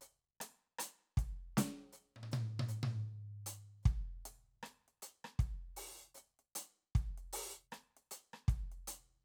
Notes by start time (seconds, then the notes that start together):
0.01 closed hi-hat, hi-hat pedal
0.40 cross-stick, closed hi-hat
0.79 closed hi-hat, cross-stick
1.17 kick, closed hi-hat
1.57 open hi-hat, snare
1.93 hi-hat pedal
2.16 high tom
2.23 high tom
2.32 hi-hat pedal, high tom
2.59 high tom
2.69 hi-hat pedal
2.83 high tom
3.46 open hi-hat
3.83 kick, hi-hat pedal
3.87 closed hi-hat
4.25 closed hi-hat
4.63 cross-stick, closed hi-hat
4.88 closed hi-hat
5.02 closed hi-hat
5.24 cross-stick
5.39 kick, closed hi-hat
5.77 open hi-hat
6.15 closed hi-hat, hi-hat pedal
6.39 closed hi-hat
6.55 closed hi-hat
6.95 kick, closed hi-hat
7.18 closed hi-hat
7.33 open hi-hat
7.72 cross-stick, closed hi-hat, hi-hat pedal
7.97 closed hi-hat
8.11 closed hi-hat
8.33 cross-stick
8.48 kick, closed hi-hat
8.72 closed hi-hat
8.87 open hi-hat